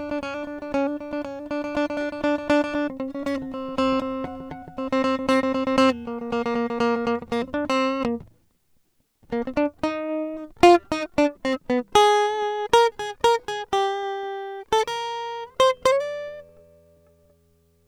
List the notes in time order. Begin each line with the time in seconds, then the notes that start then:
0.01 D4
0.11 D4
0.24 C#4
0.35 D4
0.44 D4
0.63 D4
0.75 C#4
0.88 D4
1.02 D4
1.14 D4
1.26 C#4
1.40 D4
1.52 D4
1.66 D4
1.76 D4
1.91 D4
1.99 D4
2.14 D4
2.25 D4
2.37 D4
2.51 D4
2.63 D4
2.74 D4
3.01 C4
3.10 C#4
3.20 D4
3.28 C#4
3.37 C4
3.53 C4
3.79 C4
4.00 C4
4.26 C4
4.49 C4
4.79 C4
4.93 C4
5.06 C4
5.29 C4
5.39 C4
5.49 C4
5.57 C4
5.68 C4
5.79 C4
5.91 A#3
6.09 A#3
6.20 A#3
6.33 A#3
6.47 A#3
6.57 A#3
6.72 A#3
6.82 A#3
6.92 A#3
7.08 A#3
7.33 A#3
7.55 D4
7.70 C4
8.04 A#3
9.34 A#3
9.48 C4
9.58 D4
9.84 D#4
10.64 F4
10.92 D#4
11.19 D4
11.46 C4
11.71 B3
11.96 G#4
12.74 A#4
13.00 G#4
13.25 A#4
13.49 G#4
13.74 G4
14.73 A4
14.88 A#4
15.61 C5
15.86 C5
15.96 D5